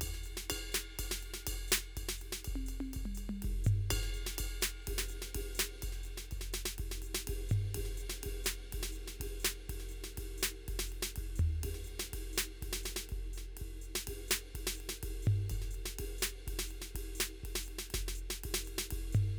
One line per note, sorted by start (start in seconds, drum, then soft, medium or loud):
0.01 kick soft
0.01 ride bell medium
0.09 kick soft
0.14 snare soft
0.23 hi-hat pedal medium
0.23 ride soft
0.37 snare medium
0.50 kick soft
0.50 ride bell loud
0.72 snare medium
0.72 hi-hat pedal medium
0.99 kick soft
0.99 ride bell medium
1.05 kick soft
1.11 snare medium
1.20 hi-hat pedal medium
1.20 ride soft
1.34 snare medium
1.47 kick soft
1.47 ride bell loud
1.54 kick soft
1.68 snare loud
1.68 hi-hat pedal medium
1.78 snare soft
1.97 kick soft
1.97 ride bell medium
2.03 kick soft
2.09 snare medium
2.18 hi-hat pedal medium
2.18 ride medium
2.32 snare medium
2.45 kick soft
2.45 ride bell medium
2.54 kick soft
2.54 high tom medium
2.66 hi-hat pedal medium
2.66 ride bell soft
2.80 closed hi-hat soft
2.80 high tom medium
2.93 kick soft
2.93 ride bell medium
3.03 kick soft
3.03 mid tom medium
3.15 hi-hat pedal medium
3.15 ride bell soft
3.29 mid tom medium
3.42 kick soft
3.42 ride medium
3.51 kick soft
3.64 hi-hat pedal medium
3.64 floor tom loud
3.91 kick soft
3.91 ride bell loud
3.99 kick soft
3.99 snare soft
4.14 hi-hat pedal medium
4.14 ride soft
4.26 snare medium
4.38 kick soft
4.38 ride bell medium
4.46 kick soft
4.62 snare loud
4.62 hi-hat pedal medium
4.82 hi-hat pedal soft
4.87 kick soft
4.87 ride loud
4.94 kick soft
4.94 snare medium
5.08 hi-hat pedal medium
5.08 ride soft
5.22 snare medium
5.35 kick soft
5.35 ride loud
5.42 kick soft
5.55 hi-hat pedal medium
5.59 snare loud
5.76 hi-hat pedal soft
5.82 kick soft
5.82 ride bell medium
5.89 kick soft
5.89 snare soft
6.03 hi-hat pedal medium
6.03 ride soft
6.17 snare medium
6.31 kick soft
6.31 ride bell soft
6.39 kick soft
6.39 snare medium
6.53 snare medium
6.53 hi-hat pedal medium
6.65 snare medium
6.78 kick soft
6.78 ride medium
6.86 kick soft
6.91 snare medium
7.02 hi-hat pedal medium
7.02 ride medium
7.15 snare loud
7.27 kick soft
7.27 ride loud
7.36 kick soft
7.49 hi-hat pedal medium
7.49 floor tom loud
7.74 kick soft
7.74 ride loud
7.84 kick soft
7.84 snare soft
7.97 hi-hat pedal medium
7.97 ride soft
8.09 snare medium
8.23 kick soft
8.23 ride loud
8.32 kick soft
8.44 snare medium
8.44 hi-hat pedal medium
8.72 kick soft
8.72 ride medium
8.80 kick soft
8.80 snare medium
8.92 hi-hat pedal medium
8.96 ride soft
9.08 snare medium
9.20 kick soft
9.20 ride medium
9.27 kick soft
9.40 hi-hat pedal medium
9.45 snare loud
9.69 kick soft
9.69 ride medium
9.76 kick soft
9.80 snare soft
9.89 hi-hat pedal medium
9.89 ride soft
10.04 snare medium
10.17 kick soft
10.17 ride medium
10.24 kick soft
10.38 hi-hat pedal medium
10.43 snare loud
10.68 kick soft
10.68 ride medium
10.74 kick soft
10.79 snare medium
10.86 hi-hat pedal medium
10.92 ride soft
11.02 snare loud
11.16 kick soft
11.16 ride medium
11.24 kick soft
11.36 floor tom loud
11.36 hi-hat pedal medium
11.63 kick soft
11.63 ride loud
11.71 kick soft
11.71 snare soft
11.84 hi-hat pedal medium
11.84 ride soft
11.99 snare medium
12.13 kick soft
12.13 ride medium
12.19 kick soft
12.33 hi-hat pedal medium
12.38 snare loud
12.62 kick soft
12.62 ride medium
12.69 kick soft
12.73 snare medium
12.83 snare medium
12.83 hi-hat pedal medium
12.96 snare medium
13.09 kick soft
13.09 ride soft
13.18 kick soft
13.33 hi-hat pedal medium
13.38 snare soft
13.57 ride medium
13.61 kick soft
13.81 hi-hat pedal medium
13.81 ride soft
13.95 snare loud
14.07 kick soft
14.07 ride medium
14.14 kick soft
14.28 snare loud
14.28 hi-hat pedal medium
14.55 kick soft
14.55 ride medium
14.60 kick soft
14.67 snare loud
14.75 hi-hat pedal medium
14.80 ride soft
14.89 snare medium
15.03 kick soft
15.03 ride medium
15.10 kick soft
15.22 hi-hat pedal medium
15.27 floor tom loud
15.50 kick soft
15.50 ride bell medium
15.57 kick soft
15.62 snare soft
15.71 hi-hat pedal medium
15.71 ride soft
15.85 snare medium
15.99 kick soft
15.99 ride loud
16.06 kick soft
16.18 snare loud
16.18 hi-hat pedal medium
16.47 kick soft
16.47 ride medium
16.54 kick soft
16.59 snare medium
16.66 hi-hat pedal medium
16.71 ride soft
16.82 snare medium
16.95 kick soft
16.95 ride medium
17.01 kick soft
17.15 hi-hat pedal medium
17.20 snare loud
17.44 kick soft
17.44 ride medium
17.55 snare medium
17.63 hi-hat pedal medium
17.68 ride soft
17.79 snare medium
17.90 kick soft
17.90 snare medium
17.90 ride medium
18.00 kick soft
18.08 snare medium
18.15 hi-hat pedal medium
18.30 snare medium
18.44 kick soft
18.44 ride medium
18.51 kick soft
18.51 snare loud
18.65 hi-hat pedal medium
18.65 ride medium
18.78 snare loud
18.91 kick soft
18.91 ride medium
18.99 kick soft
19.12 hi-hat pedal medium
19.12 floor tom loud